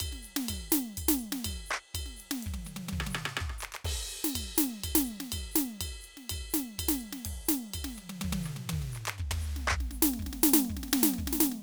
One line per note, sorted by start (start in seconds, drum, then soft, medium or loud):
0.01 kick soft
0.01 ride bell loud
0.08 kick soft
0.13 snare soft
0.23 hi-hat pedal medium
0.23 ride soft
0.37 snare medium
0.46 hi-hat pedal soft
0.46 ride bell loud
0.50 kick soft
0.71 snare loud
0.71 hi-hat pedal medium
0.93 hi-hat pedal soft
0.98 kick soft
0.98 ride bell medium
1.04 kick soft
1.09 snare loud
1.18 hi-hat pedal medium
1.18 ride soft
1.33 snare medium
1.45 kick soft
1.45 ride bell loud
1.52 kick soft
1.67 hi-hat pedal medium
1.71 percussion loud
1.95 kick soft
1.95 ride bell loud
2.01 kick soft
2.06 snare soft
2.17 hi-hat pedal medium
2.17 ride medium
2.32 snare medium
2.43 kick soft
2.43 ride medium
2.53 kick soft
2.53 high tom medium
2.66 hi-hat pedal medium
2.66 high tom medium
2.77 high tom medium
2.89 high tom medium
2.94 kick soft
3.01 kick soft
3.01 cross-stick medium
3.07 hi-hat pedal medium
3.07 high tom medium
3.16 cross-stick loud
3.26 cross-stick loud
3.38 cross-stick loud
3.42 kick soft
3.48 kick soft
3.48 cross-stick medium
3.59 percussion medium
3.59 hi-hat pedal medium
3.73 percussion medium
3.85 kick soft
3.85 crash medium
3.92 kick soft
4.08 hi-hat pedal medium
4.25 snare medium
4.36 kick soft
4.36 ride bell loud
4.56 snare loud
4.56 hi-hat pedal medium
4.78 hi-hat pedal soft
4.84 kick soft
4.84 ride bell loud
4.91 kick soft
4.96 snare loud
5.05 hi-hat pedal medium
5.05 ride medium
5.21 snare medium
5.33 kick soft
5.33 ride bell loud
5.40 kick soft
5.52 hi-hat pedal medium
5.56 snare loud
5.81 kick soft
5.81 ride bell loud
6.02 hi-hat pedal medium
6.02 ride soft
6.18 snare soft
6.30 kick soft
6.30 ride bell loud
6.38 kick soft
6.51 snare medium
6.51 hi-hat pedal medium
6.79 kick soft
6.79 ride bell loud
6.89 snare medium
6.98 hi-hat pedal medium
6.98 ride soft
7.13 snare medium
7.26 kick soft
7.26 ride loud
7.32 kick soft
7.46 snare loud
7.46 hi-hat pedal medium
7.74 kick soft
7.74 ride bell loud
7.81 kick soft
7.85 snare medium
7.95 hi-hat pedal medium
7.95 high tom soft
8.10 high tom medium
8.22 kick soft
8.22 high tom loud
8.31 kick soft
8.31 high tom loud
8.44 cross-stick soft
8.44 hi-hat pedal medium
8.57 high tom medium
8.70 kick soft
8.70 mid tom loud
8.80 kick soft
8.80 mid tom soft
8.93 percussion soft
8.93 hi-hat pedal medium
9.06 percussion loud
9.19 kick soft
9.19 floor tom soft
9.27 kick soft
9.32 floor tom loud
9.42 hi-hat pedal medium
9.57 snare soft
9.68 kick soft
9.68 percussion loud
9.78 kick soft
9.78 snare soft
9.92 snare soft
9.92 hi-hat pedal medium
10.03 snare loud
10.14 snare soft
10.20 kick soft
10.20 snare soft
10.26 kick soft
10.26 snare soft
10.34 snare medium
10.42 snare loud
10.42 hi-hat pedal medium
10.54 snare loud
10.65 snare soft
10.70 kick soft
10.70 snare soft
10.78 snare soft
10.84 snare medium
10.89 snare soft
10.89 hi-hat pedal medium
10.94 snare loud
11.04 snare loud
11.14 snare soft
11.19 kick soft
11.19 snare soft
11.26 kick soft
11.26 snare soft
11.26 snare medium
11.33 snare medium
11.40 snare loud
11.40 hi-hat pedal medium
11.52 snare soft